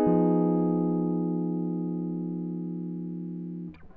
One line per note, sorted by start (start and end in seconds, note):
0.00 3.56 B3
0.08 3.73 F3